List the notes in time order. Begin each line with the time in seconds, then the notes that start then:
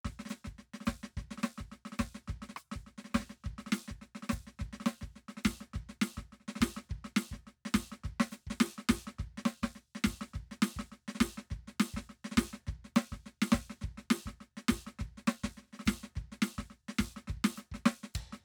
0.03 kick, snare
0.09 kick
0.19 snare
0.25 snare, hi-hat pedal
0.30 snare
0.44 kick, snare
0.58 snare
0.74 snare
0.80 snare
0.85 kick, snare, hi-hat pedal
1.03 snare
1.17 kick, snare
1.23 kick
1.31 snare
1.37 snare
1.42 snare, hi-hat pedal
1.58 kick, snare
1.72 snare
1.85 snare
1.92 snare
1.98 kick, snare, hi-hat pedal
2.14 snare
2.28 kick, snare
2.36 kick
2.42 snare
2.49 snare
2.56 cross-stick, hi-hat pedal
2.71 snare
2.75 kick
2.86 snare
2.98 snare
3.04 snare
3.10 snare
3.14 kick, hi-hat pedal
3.29 snare
3.44 kick, snare
3.51 kick
3.58 snare
3.66 snare
3.72 snare, hi-hat pedal
3.88 kick, snare
4.01 snare
4.15 snare
4.22 snare
4.29 kick, snare, hi-hat pedal
4.41 kick
4.47 snare
4.59 kick, snare
4.68 kick
4.73 snare
4.80 snare
4.86 snare, hi-hat pedal
5.01 kick, snare
5.16 snare
5.28 snare
5.37 snare
5.44 kick, snare, hi-hat pedal
5.60 snare
5.73 kick, snare
5.82 kick
5.89 snare
6.01 snare, hi-hat pedal
6.17 kick, snare
6.32 snare
6.40 snare
6.48 snare
6.55 snare
6.61 kick, snare, hi-hat pedal
6.76 snare
6.89 kick, snare
6.97 kick
7.04 snare
7.16 snare, hi-hat pedal
7.31 kick, snare
7.47 snare
7.65 snare
7.74 kick, snare, hi-hat pedal
7.92 snare
8.03 kick, snare
8.11 kick
8.13 kick
8.20 snare
8.31 snare, hi-hat pedal
8.47 kick, snare
8.60 snare
8.78 snare
8.89 kick, snare, hi-hat pedal
9.07 snare
9.18 kick, snare
9.26 kick
9.37 snare
9.45 snare, hi-hat pedal
9.62 kick, snare
9.75 snare
9.95 snare
10.04 kick, snare, hi-hat pedal
10.12 kick
10.21 snare
10.33 kick, snare
10.51 snare
10.62 snare, hi-hat pedal
10.76 kick, snare
10.92 snare
11.08 snare
11.15 snare
11.20 kick, snare, hi-hat pedal
11.26 kick
11.37 snare
11.50 kick, snare
11.60 kick
11.67 snare
11.80 snare, hi-hat pedal
11.94 kick, snare
11.99 kick
12.09 snare
12.24 snare
12.31 snare
12.37 kick, snare, hi-hat pedal
12.53 snare
12.67 kick, snare
12.75 kick
12.84 snare
12.95 snare, hi-hat pedal
13.12 kick, snare
13.26 snare
13.42 snare
13.52 kick, snare, hi-hat pedal
13.62 kick
13.70 snare
13.81 kick, snare
13.90 kick
13.97 snare
14.10 snare, hi-hat pedal
14.26 kick, snare
14.40 snare
14.57 snare
14.68 kick, snare, hi-hat pedal
14.87 snare
14.99 kick, snare
15.07 kick
15.17 snare
15.27 snare, hi-hat pedal
15.43 kick, snare
15.57 snare
15.62 snare
15.66 snare
15.72 snare
15.79 snare
15.85 kick, snare, hi-hat pedal
16.03 snare
16.15 kick, snare
16.23 kick
16.32 snare
16.42 snare, hi-hat pedal
16.58 kick, snare
16.70 snare
16.88 snare
16.98 kick, snare, hi-hat pedal
17.16 snare
17.27 kick, snare
17.37 kick
17.44 snare
17.56 snare, hi-hat pedal
17.71 kick, snare
17.85 snare
18.03 snare
18.14 kick, hi-hat pedal, floor tom
18.32 snare